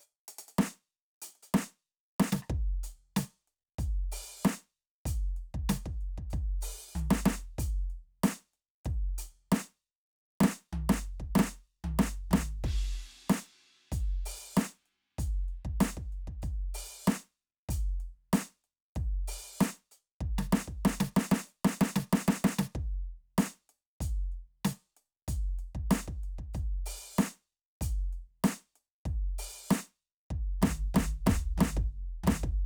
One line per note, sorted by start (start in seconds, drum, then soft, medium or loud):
0.01 hi-hat pedal soft
0.29 closed hi-hat loud
0.40 closed hi-hat loud
0.50 closed hi-hat medium
0.60 snare loud
1.23 closed hi-hat loud
1.37 closed hi-hat soft
1.44 closed hi-hat medium
1.55 snare loud
2.21 snare loud
2.34 snare loud
2.44 cross-stick medium
2.51 kick medium
2.85 closed hi-hat medium
3.18 closed hi-hat loud
3.18 snare loud
3.49 closed hi-hat soft
3.80 closed hi-hat medium
3.80 kick medium
4.13 open hi-hat loud
4.46 snare loud
4.46 hi-hat pedal medium
5.07 closed hi-hat loud
5.07 kick medium
5.38 closed hi-hat soft
5.56 kick medium
5.71 closed hi-hat loud
5.71 snare loud
5.87 kick medium
6.02 closed hi-hat soft
6.19 kick soft
6.32 closed hi-hat soft
6.32 kick medium
6.62 open hi-hat loud
6.62 hi-hat pedal soft
6.97 floor tom loud
6.97 hi-hat pedal medium
7.12 snare loud
7.27 snare loud
7.60 closed hi-hat loud
7.60 kick medium
7.91 closed hi-hat soft
8.25 closed hi-hat loud
8.25 snare loud
8.55 closed hi-hat soft
8.86 kick medium
8.86 closed hi-hat soft
9.19 open hi-hat loud
9.53 snare loud
9.53 hi-hat pedal medium
9.53 open hi-hat medium
10.42 snare loud
10.45 snare loud
10.74 floor tom loud
10.91 snare loud
11.21 kick medium
11.37 snare loud
11.40 snare loud
11.85 floor tom loud
12.00 snare loud
12.32 snare loud
12.32 floor tom loud
12.65 kick medium
12.65 ride loud
13.31 closed hi-hat loud
13.31 snare loud
13.93 closed hi-hat medium
13.93 kick medium
14.27 open hi-hat loud
14.58 closed hi-hat medium
14.58 snare loud
14.58 hi-hat pedal medium
14.87 closed hi-hat soft
15.20 closed hi-hat loud
15.20 kick medium
15.50 closed hi-hat soft
15.66 kick medium
15.82 closed hi-hat loud
15.82 snare loud
15.98 kick medium
16.14 closed hi-hat soft
16.29 kick soft
16.43 closed hi-hat medium
16.43 kick medium
16.76 open hi-hat loud
17.09 open hi-hat medium
17.09 snare loud
17.09 hi-hat pedal medium
17.70 closed hi-hat loud
17.70 kick medium
18.01 closed hi-hat soft
18.34 closed hi-hat loud
18.34 snare loud
18.65 closed hi-hat soft
18.97 kick medium
18.97 closed hi-hat soft
19.29 open hi-hat loud
19.62 open hi-hat loud
19.62 snare loud
19.62 hi-hat pedal soft
19.93 closed hi-hat soft
20.22 kick medium
20.40 snare medium
20.54 snare loud
20.69 kick medium
20.86 snare loud
21.02 snare loud
21.18 snare loud
21.33 snare loud
21.48 hi-hat pedal soft
21.66 snare loud
21.82 snare loud
21.97 snare loud
22.14 snare loud
22.29 snare loud
22.46 snare loud
22.60 snare loud
22.76 kick medium
23.39 closed hi-hat loud
23.39 snare loud
23.71 closed hi-hat soft
24.02 closed hi-hat loud
24.02 kick medium
24.33 closed hi-hat soft
24.66 closed hi-hat loud
24.66 snare loud
24.98 closed hi-hat soft
25.29 closed hi-hat loud
25.29 kick medium
25.60 closed hi-hat soft
25.76 kick medium
25.92 closed hi-hat loud
25.92 snare loud
26.09 kick medium
26.25 closed hi-hat soft
26.40 kick soft
26.55 closed hi-hat medium
26.55 kick medium
26.87 open hi-hat loud
27.19 closed hi-hat loud
27.19 snare loud
27.19 hi-hat pedal medium
27.82 closed hi-hat loud
27.82 kick medium
28.14 closed hi-hat soft
28.45 closed hi-hat loud
28.45 snare loud
28.77 closed hi-hat soft
29.07 kick medium
29.07 closed hi-hat soft
29.40 open hi-hat loud
29.72 open hi-hat loud
29.72 snare loud
29.72 hi-hat pedal soft
30.32 kick medium
30.63 kick medium
30.63 snare loud
30.63 floor tom loud
30.96 kick medium
30.96 snare loud
30.96 floor tom loud
31.28 kick medium
31.28 kick loud
31.28 snare loud
31.59 kick medium
31.59 snare loud
31.59 floor tom loud
31.78 kick medium
32.25 kick medium
32.25 snare loud
32.25 floor tom loud
32.45 kick medium